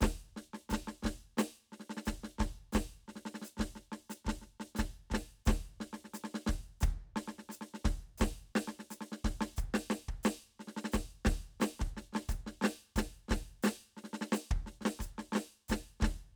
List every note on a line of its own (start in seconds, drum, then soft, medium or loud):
0.01 kick medium
0.01 snare soft
0.01 hi-hat pedal medium
0.03 snare medium
0.37 snare soft
0.54 snare soft
0.70 kick soft
0.70 snare soft
0.70 hi-hat pedal medium
0.73 snare medium
0.88 snare soft
1.03 kick medium
1.03 snare soft
1.05 snare medium
1.38 snare soft
1.38 snare loud
1.38 hi-hat pedal medium
1.72 snare soft
1.80 snare soft
1.90 snare soft
1.97 snare soft
2.06 kick soft
2.06 hi-hat pedal medium
2.24 snare soft
2.39 kick medium
2.39 snare soft
2.41 snare medium
2.73 kick medium
2.73 snare soft
2.73 hi-hat pedal medium
2.75 snare medium
3.08 snare soft
3.16 snare soft
3.26 snare soft
3.35 snare soft
3.42 snare soft
3.42 hi-hat pedal medium
3.57 kick soft
3.57 snare soft
3.60 snare medium
3.76 snare soft
3.92 snare soft
4.10 snare soft
4.10 hi-hat pedal medium
4.25 kick medium
4.25 snare soft
4.28 snare medium
4.42 snare soft
4.60 snare soft
4.75 snare soft
4.75 hi-hat pedal medium
4.79 kick medium
4.79 snare medium
5.11 kick medium
5.11 snare soft
5.14 snare medium
5.46 kick loud
5.46 snare soft
5.46 hi-hat pedal medium
5.48 snare medium
5.81 snare soft
5.93 snare soft
6.05 snare soft
6.14 snare soft
6.14 hi-hat pedal medium
6.24 snare soft
6.35 snare medium
6.47 kick medium
6.47 snare medium
6.81 kick loud
6.81 snare soft
6.81 hi-hat pedal medium
7.16 snare medium
7.28 snare soft
7.39 snare soft
7.49 snare soft
7.49 hi-hat pedal medium
7.61 snare soft
7.74 snare soft
7.85 kick medium
7.85 snare medium
8.18 kick medium
8.18 snare soft
8.18 snare medium
8.18 hi-hat pedal medium
8.56 snare medium
8.68 snare soft
8.79 snare soft
8.91 snare soft
8.91 hi-hat pedal medium
9.01 snare soft
9.12 snare soft
9.25 kick medium
9.25 snare medium
9.41 snare medium
9.57 kick medium
9.57 hi-hat pedal medium
9.74 snare medium
9.90 snare medium
10.09 kick medium
10.24 snare loud
10.24 hi-hat pedal medium
10.60 snare soft
10.68 snare soft
10.77 snare medium
10.85 snare medium
10.92 kick medium
10.92 snare medium
10.92 hi-hat pedal medium
11.25 kick medium
11.25 snare medium
11.60 snare soft
11.60 hi-hat pedal medium
11.62 snare loud
11.80 kick medium
11.80 snare soft
11.97 snare soft
12.13 snare soft
12.15 snare medium
12.29 kick medium
12.29 snare soft
12.29 hi-hat pedal medium
12.47 snare soft
12.62 snare medium
12.64 snare loud
12.96 kick medium
12.96 snare soft
12.96 snare medium
12.96 hi-hat pedal medium
13.29 kick medium
13.29 snare soft
13.31 snare medium
13.63 snare loud
13.63 hi-hat pedal medium
13.66 snare medium
13.97 snare soft
14.04 snare soft
14.13 snare soft
14.21 snare medium
14.32 snare medium
14.32 hi-hat pedal medium
14.51 kick medium
14.67 snare soft
14.81 snare soft
14.86 snare medium
15.00 kick soft
15.00 snare soft
15.00 hi-hat pedal medium
15.18 snare soft
15.33 snare medium
15.35 snare medium
15.69 kick medium
15.69 snare soft
15.69 snare medium
15.69 hi-hat pedal medium
16.00 kick medium
16.00 snare soft
16.04 snare medium